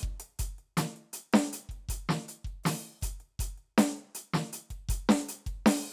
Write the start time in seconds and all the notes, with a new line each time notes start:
0.01 kick, hi-hat pedal
0.20 closed hi-hat
0.39 closed hi-hat, kick
0.58 closed hi-hat
0.77 closed hi-hat, snare
0.96 closed hi-hat
1.13 closed hi-hat
1.33 snare, closed hi-hat
1.53 closed hi-hat
1.69 kick, closed hi-hat
1.89 closed hi-hat, kick
2.08 snare, closed hi-hat
2.28 closed hi-hat
2.44 kick, closed hi-hat
2.63 open hi-hat, snare, hi-hat pedal
3.01 closed hi-hat, kick, hi-hat pedal
3.20 closed hi-hat
3.39 closed hi-hat, kick
3.58 closed hi-hat
3.78 closed hi-hat, snare
3.96 closed hi-hat
4.15 closed hi-hat
4.33 snare, closed hi-hat
4.53 closed hi-hat
4.70 kick, closed hi-hat
4.89 open hi-hat, kick
5.09 snare
5.24 hi-hat pedal
5.28 closed hi-hat
5.46 kick, closed hi-hat
5.66 open hi-hat, snare